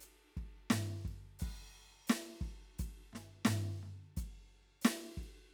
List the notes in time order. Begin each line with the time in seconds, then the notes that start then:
0.01 hi-hat pedal, ride
0.37 kick, ride
0.71 snare, floor tom, hi-hat pedal
1.06 kick, ride
1.40 kick, hi-hat pedal, crash
2.08 snare, hi-hat pedal, ride
2.42 kick, ride
2.79 kick, hi-hat pedal, ride
3.13 snare, floor tom
3.45 snare, floor tom
3.50 hi-hat pedal
3.83 floor tom
4.17 kick, hi-hat pedal, ride
4.82 snare, hi-hat pedal, ride
5.18 kick
5.24 ride